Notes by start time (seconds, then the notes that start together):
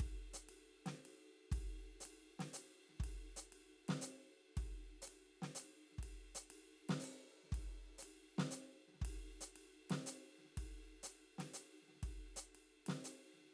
0.01 kick, ride
0.34 hi-hat pedal
0.50 ride
0.87 snare, ride
1.06 ride
1.52 kick, ride
2.01 hi-hat pedal
2.06 ride
2.40 snare, ride
2.54 hi-hat pedal, ride
2.90 snare
2.94 snare
3.01 kick, ride
3.37 hi-hat pedal
3.53 ride
3.89 snare, ride
4.02 hi-hat pedal
4.07 ride
4.58 kick, ride
5.03 hi-hat pedal
5.09 ride
5.43 snare, ride
5.56 hi-hat pedal
5.61 ride
5.92 snare
5.99 kick
6.04 ride
6.36 hi-hat pedal
6.51 ride
6.90 snare, ride
7.01 hi-hat pedal
7.05 ride
7.44 snare
7.53 kick, ride
7.99 hi-hat pedal
8.04 ride
8.39 snare, ride
8.52 hi-hat pedal
8.56 ride
8.89 snare
8.92 snare
8.95 snare
9.02 kick, snare, ride
9.42 hi-hat pedal
9.57 ride
9.91 snare, ride
10.07 hi-hat pedal, ride
10.39 snare
10.45 snare
10.58 kick, ride
11.04 hi-hat pedal
11.08 ride
11.39 snare, ride
11.54 hi-hat pedal, ride
11.83 snare
11.89 snare
11.94 snare
11.97 snare
12.04 kick, ride
12.37 hi-hat pedal
12.56 ride
12.87 snare, ride
13.05 hi-hat pedal, ride
13.34 snare
13.38 snare
13.40 snare
13.44 snare